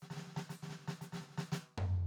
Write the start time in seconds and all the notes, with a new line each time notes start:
0.01 snare, hi-hat pedal
0.11 snare
0.15 snare
0.17 snare
0.22 snare
0.28 snare
0.32 snare
0.37 snare
0.50 snare, hi-hat pedal
0.63 snare
0.67 snare
0.70 snare
0.75 snare
0.79 snare
0.83 snare
0.88 snare
1.02 snare, hi-hat pedal
1.13 snare
1.15 snare
1.21 snare
1.26 snare
1.30 snare
1.35 snare
1.38 snare
1.53 snare, hi-hat pedal
1.78 floor tom